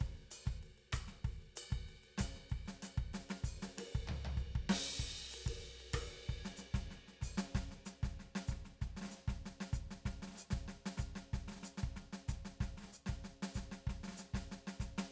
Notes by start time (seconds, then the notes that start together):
0.01 kick, ride bell
0.18 ride
0.31 hi-hat pedal, ride bell
0.46 kick, snare
0.63 ride
0.78 ride
0.93 kick, cross-stick, hi-hat pedal, ride bell
1.08 snare
1.25 kick, ride
1.42 ride
1.56 hi-hat pedal, ride bell
1.71 kick, snare
1.89 ride
2.04 ride
2.18 kick, snare, hi-hat pedal, ride bell
2.36 snare
2.50 kick, ride bell
2.67 snare, ride
2.83 snare, hi-hat pedal, ride bell
2.98 kick
3.14 snare, ride
3.30 snare, ride
3.44 kick, hi-hat pedal
3.63 snare, ride
3.78 snare, ride
3.95 kick
4.08 floor tom, high tom
4.25 floor tom, high tom
4.37 kick, hi-hat pedal
4.56 kick
4.70 snare, ride
4.88 snare
5.00 kick, ride
5.19 snare
5.31 hi-hat pedal, ride
5.47 kick, ride
5.64 snare
5.81 ride
5.94 kick, cross-stick, hi-hat pedal, ride
6.14 snare
6.29 kick
6.45 snare
6.57 snare, hi-hat pedal
6.74 kick, snare
6.91 snare
7.08 snare
7.21 kick, snare, hi-hat pedal
7.38 snare
7.55 kick, snare
7.72 snare
7.86 snare, hi-hat pedal
8.03 kick, snare
8.20 snare
8.36 snare
8.48 kick, snare, hi-hat pedal
8.65 snare
8.82 kick, snare
8.97 snare
9.02 snare
9.05 snare
9.08 snare
9.11 snare, hi-hat pedal
9.13 snare
9.28 kick, snare
9.46 snare
9.61 snare
9.73 kick, snare, hi-hat pedal
9.91 snare
10.06 kick, snare
10.23 snare
10.27 snare
10.31 snare
10.35 snare, hi-hat pedal
10.51 kick, snare
10.68 snare
10.86 snare
10.98 kick, snare, hi-hat pedal
11.16 snare
11.34 kick, snare
11.48 snare
11.52 snare
11.56 snare
11.63 snare, hi-hat pedal
11.78 snare
11.84 kick
11.97 snare
12.13 snare
12.29 kick, snare, hi-hat pedal
12.45 snare
12.61 kick, snare
12.78 snare
12.81 snare
12.84 snare
12.90 snare, hi-hat pedal
13.07 kick, snare
13.25 snare
13.43 snare
13.55 kick, snare, hi-hat pedal
13.72 snare
13.87 kick, snare
14.04 snare
14.08 snare
14.11 snare
14.13 snare
14.17 snare, hi-hat pedal
14.34 kick, snare
14.52 snare
14.68 snare
14.80 kick, snare, hi-hat pedal
14.98 snare